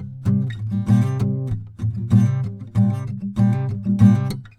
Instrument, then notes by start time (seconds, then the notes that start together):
acoustic guitar
0.00 C3
0.28 C3 G3
0.49 A#2
0.73 A#2 G3
0.90 A#2 G3
1.04 C3
1.21 C3 G3
1.81 A#2
1.92 A#2
2.13 A#2 G3
2.28 C3
2.77 A#2 G3
2.92 C3
3.09 G3
3.24 G3
3.38 A#2 G3
3.55 C3
3.71 G3
3.87 G3
4.00 A#2 G3
4.18 C3